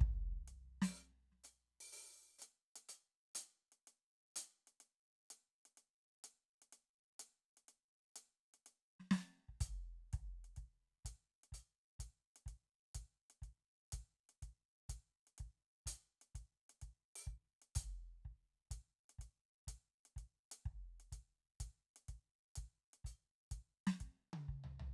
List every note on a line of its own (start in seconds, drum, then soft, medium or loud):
0.01 kick soft
0.48 closed hi-hat soft
0.82 open hi-hat medium
0.82 snare medium
1.32 snare soft
1.44 closed hi-hat soft
1.44 hi-hat pedal soft
1.81 open hi-hat medium
1.93 open hi-hat medium
2.39 closed hi-hat medium
2.39 hi-hat pedal soft
2.76 closed hi-hat medium
2.89 closed hi-hat medium
3.35 closed hi-hat loud
3.72 closed hi-hat soft
3.88 closed hi-hat soft
4.36 closed hi-hat loud
4.68 closed hi-hat soft
4.81 closed hi-hat soft
5.31 closed hi-hat medium
5.66 closed hi-hat soft
5.78 closed hi-hat soft
6.24 closed hi-hat medium
6.62 closed hi-hat soft
6.73 closed hi-hat soft
7.20 closed hi-hat medium
7.58 closed hi-hat soft
7.69 closed hi-hat soft
8.16 closed hi-hat medium
8.54 closed hi-hat soft
8.67 closed hi-hat soft
9.00 snare soft
9.11 snare medium
9.49 kick soft
9.61 closed hi-hat medium
9.61 kick soft
10.13 kick soft
10.13 closed hi-hat soft
10.45 closed hi-hat soft
10.57 kick soft
10.57 closed hi-hat soft
11.05 kick soft
11.05 closed hi-hat medium
11.44 closed hi-hat soft
11.52 closed hi-hat medium
11.52 kick soft
12.00 kick soft
12.00 closed hi-hat medium
12.36 closed hi-hat soft
12.46 kick soft
12.46 closed hi-hat soft
12.95 kick soft
12.95 closed hi-hat medium
13.30 closed hi-hat soft
13.42 kick soft
13.42 closed hi-hat soft
13.93 kick soft
13.93 closed hi-hat medium
14.29 closed hi-hat soft
14.43 kick soft
14.43 closed hi-hat soft
14.89 kick soft
14.89 closed hi-hat medium
15.27 closed hi-hat soft
15.38 kick soft
15.38 closed hi-hat soft
15.86 closed hi-hat medium
15.86 kick soft
16.22 closed hi-hat soft
16.35 kick soft
16.35 closed hi-hat soft
16.70 closed hi-hat soft
16.82 kick soft
16.82 closed hi-hat soft
17.16 open hi-hat medium
17.22 hi-hat pedal soft
17.27 kick soft
17.62 closed hi-hat soft
17.76 open hi-hat medium
17.76 kick soft
18.25 kick soft
18.71 kick soft
18.71 closed hi-hat medium
19.10 closed hi-hat soft
19.19 kick soft
19.19 closed hi-hat soft
19.68 kick soft
19.68 closed hi-hat medium
20.06 closed hi-hat soft
20.16 kick soft
20.16 closed hi-hat soft
20.52 open hi-hat medium
20.66 kick soft
21.00 closed hi-hat soft
21.12 kick soft
21.12 closed hi-hat medium
21.60 kick soft
21.60 closed hi-hat medium
21.96 closed hi-hat soft
22.09 kick soft
22.09 closed hi-hat soft
22.56 kick soft
22.56 closed hi-hat medium
22.94 closed hi-hat soft
23.05 closed hi-hat soft
23.05 kick soft
23.52 kick soft
23.52 closed hi-hat medium
23.87 snare medium
23.87 closed hi-hat soft
24.01 kick soft
24.01 closed hi-hat soft
24.34 high tom medium
24.49 kick soft
24.64 floor tom soft
24.80 floor tom medium